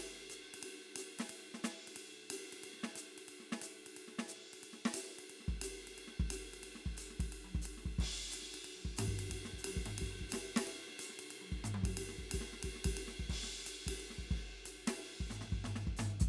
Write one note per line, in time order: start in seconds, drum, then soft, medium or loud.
0.31 hi-hat pedal medium
0.31 ride medium
0.52 snare soft
0.52 ride medium
0.64 ride medium
0.97 hi-hat pedal loud
0.97 ride loud
1.20 snare medium
1.20 ride medium
1.30 ride medium
1.55 snare soft
1.64 snare medium
1.64 hi-hat pedal loud
1.64 ride medium
1.88 ride medium
1.97 ride medium
2.23 snare soft
2.31 hi-hat pedal medium
2.31 ride loud
2.53 ride medium
2.64 ride medium
2.74 snare soft
2.84 snare medium
2.96 hi-hat pedal loud
2.96 ride medium
3.19 ride medium
3.29 ride medium
3.40 snare soft
3.53 snare medium
3.62 hi-hat pedal loud
3.62 ride medium
3.87 ride medium
3.97 ride medium
4.08 snare soft
4.19 snare medium
4.29 hi-hat pedal loud
4.29 ride medium
4.54 ride medium
4.64 ride medium
4.74 snare soft
4.86 snare medium
4.94 hi-hat pedal loud
4.94 ride loud
5.19 ride medium
5.30 ride medium
5.41 snare soft
5.49 kick soft
5.62 hi-hat pedal loud
5.62 ride loud
5.88 ride medium
5.99 ride medium
6.08 snare soft
6.20 kick medium
6.31 hi-hat pedal medium
6.31 ride loud
6.54 ride medium
6.64 ride medium
6.76 snare soft
6.87 kick soft
6.98 hi-hat pedal medium
6.98 ride medium
7.11 snare soft
7.20 kick soft
7.20 ride medium
7.33 ride medium
7.45 high tom soft
7.55 kick soft
7.63 hi-hat pedal medium
7.63 ride medium
7.78 snare soft
7.86 kick soft
7.99 kick medium
7.99 ride loud
8.32 hi-hat pedal loud
8.32 ride medium
8.43 snare soft
8.55 ride medium
8.65 ride medium
8.77 high tom soft
8.86 kick soft
8.97 floor tom medium
8.97 hi-hat pedal loud
8.97 ride loud
9.08 kick soft
9.20 ride medium
9.31 kick soft
9.31 ride medium
9.46 snare soft
9.54 kick soft
9.59 hi-hat pedal medium
9.65 high tom soft
9.65 ride loud
9.77 kick soft
9.87 floor tom medium
9.87 ride medium
9.99 kick soft
9.99 ride loud
10.12 high tom soft
10.22 kick soft
10.30 hi-hat pedal medium
10.30 ride loud
10.34 snare medium
10.57 snare medium
10.57 ride loud
10.68 ride medium
10.89 snare soft
11.00 hi-hat pedal loud
11.00 ride medium
11.10 snare soft
11.20 ride medium
11.31 ride medium
11.42 high tom soft
11.53 kick soft
11.65 floor tom medium
11.65 hi-hat pedal loud
11.75 high tom medium
11.84 kick medium
11.84 ride medium
11.98 ride loud
12.09 snare soft
12.19 kick soft
12.32 kick soft
12.32 hi-hat pedal medium
12.32 ride loud
12.42 snare soft
12.54 snare soft
12.64 kick soft
12.64 ride loud
12.76 snare soft
12.85 kick medium
12.85 ride loud
12.98 ride medium
13.08 snare soft
13.20 kick soft
13.30 kick soft
13.30 ride medium
13.44 snare soft
13.66 hi-hat pedal medium
13.66 ride medium
13.87 kick soft
13.87 ride loud
14.00 ride medium
14.11 snare soft
14.19 kick soft
14.32 kick medium
14.32 ride soft
14.48 snare soft
14.66 hi-hat pedal medium
14.66 ride medium
14.88 snare medium
14.88 ride loud
14.99 ride medium
15.21 kick soft
15.31 snare soft
15.31 floor tom medium
15.31 hi-hat pedal medium
15.42 snare soft
15.42 floor tom medium
15.53 kick soft
15.65 snare medium
15.65 floor tom medium
15.65 hi-hat pedal soft
15.76 snare soft
15.76 floor tom medium
15.88 kick soft
15.97 snare medium
15.97 floor tom medium
15.97 hi-hat pedal medium
16.21 open hi-hat medium
16.21 kick medium